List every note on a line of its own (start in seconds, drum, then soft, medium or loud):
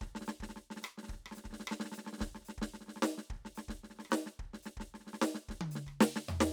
0.01 kick soft
0.01 snare soft
0.07 kick soft
0.15 snare soft
0.21 snare soft
0.26 snare medium
0.26 hi-hat pedal soft
0.40 kick soft
0.40 snare soft
0.45 kick soft
0.45 snare soft
0.56 snare soft
0.70 snare soft
0.76 snare soft
0.82 cross-stick medium
0.82 snare soft
0.82 hi-hat pedal soft
0.98 snare soft
1.03 snare soft
1.07 kick soft
1.07 snare soft
1.12 snare soft
1.26 cross-stick medium
1.31 snare soft
1.31 hi-hat pedal soft
1.37 snare soft
1.44 kick soft
1.44 snare soft
1.50 snare soft
1.53 snare soft
1.60 snare soft
1.67 cross-stick medium
1.67 snare medium
1.80 snare medium
1.85 snare soft
1.92 snare soft
1.92 hi-hat pedal soft
1.98 snare soft
2.04 snare soft
2.06 snare soft
2.13 snare soft
2.18 snare soft
2.20 kick soft
2.20 snare medium
2.27 kick soft
2.35 snare soft
2.41 snare soft
2.45 snare soft
2.45 hi-hat pedal soft
2.58 kick soft
2.58 snare medium
2.63 kick soft
2.74 snare soft
2.81 snare soft
2.86 snare soft
2.88 snare soft
2.96 snare soft
3.02 snare medium
3.02 hi-hat pedal soft
3.18 snare soft
3.30 kick soft
3.30 snare soft
3.36 kick soft
3.45 snare soft
3.55 snare soft
3.55 hi-hat pedal soft
3.68 kick soft
3.68 snare soft
3.74 kick soft
3.83 snare soft
3.90 snare soft
3.95 snare soft
3.99 snare soft
4.05 cross-stick soft
4.10 snare soft
4.10 hi-hat pedal soft
4.12 snare medium
4.26 snare soft
4.39 kick soft
4.39 snare soft
4.45 kick soft
4.53 snare soft
4.63 snare soft
4.63 hi-hat pedal soft
4.77 kick soft
4.77 snare soft
4.94 snare soft
5.00 snare soft
5.05 snare soft
5.07 snare soft
5.13 snare soft
5.21 snare loud
5.21 hi-hat pedal soft
5.35 snare soft
5.49 kick soft
5.49 snare soft
5.61 high tom loud
5.71 hi-hat pedal medium
5.75 snare soft
5.86 kick soft
5.86 cross-stick soft
6.01 snare loud
6.16 snare medium
6.27 floor tom medium
6.27 hi-hat pedal soft
6.40 snare loud